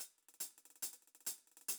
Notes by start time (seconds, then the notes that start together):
0.00 closed hi-hat
0.10 closed hi-hat
0.18 closed hi-hat
0.23 closed hi-hat
0.29 closed hi-hat
0.34 closed hi-hat
0.40 closed hi-hat
0.51 closed hi-hat
0.58 closed hi-hat
0.65 closed hi-hat
0.70 closed hi-hat
0.76 closed hi-hat
0.82 closed hi-hat
0.93 closed hi-hat
1.02 closed hi-hat
1.07 closed hi-hat
1.15 closed hi-hat
1.21 closed hi-hat
1.25 closed hi-hat
1.38 closed hi-hat
1.47 closed hi-hat
1.52 closed hi-hat
1.57 closed hi-hat
1.61 closed hi-hat
1.68 closed hi-hat